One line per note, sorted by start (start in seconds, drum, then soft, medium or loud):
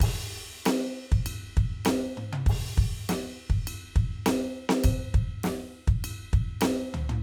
0.01 kick loud
0.01 ride bell loud
0.01 crash loud
0.66 snare loud
0.66 ride bell loud
1.12 kick loud
1.26 ride bell loud
1.57 kick loud
1.85 snare loud
1.85 ride bell loud
2.18 mid tom loud
2.33 high tom loud
2.47 kick loud
2.47 crash loud
2.78 kick loud
2.78 snare soft
3.10 snare loud
3.10 ride bell loud
3.50 kick loud
3.68 ride bell loud
3.96 kick loud
3.96 snare soft
4.26 snare loud
4.26 ride bell loud
4.70 snare loud
4.84 kick loud
4.84 ride bell loud
5.15 kick loud
5.44 snare loud
5.44 ride loud
5.88 kick loud
6.04 ride bell loud
6.33 kick loud
6.33 snare soft
6.61 snare loud
6.61 ride bell loud
6.94 floor tom loud
7.10 mid tom loud